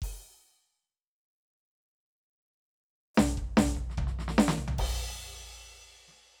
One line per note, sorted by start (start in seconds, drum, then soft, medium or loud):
0.02 open hi-hat medium
0.02 kick medium
3.14 snare loud
3.14 hi-hat pedal soft
3.19 floor tom loud
3.37 kick medium
3.37 floor tom soft
3.57 snare loud
3.57 floor tom loud
3.75 kick soft
3.75 floor tom medium
3.90 snare soft
3.97 kick medium
3.97 floor tom loud
4.07 snare soft
4.19 snare medium
4.28 snare medium
4.38 snare loud
4.48 snare loud
4.58 floor tom loud
4.78 kick medium
4.78 crash loud
6.08 snare soft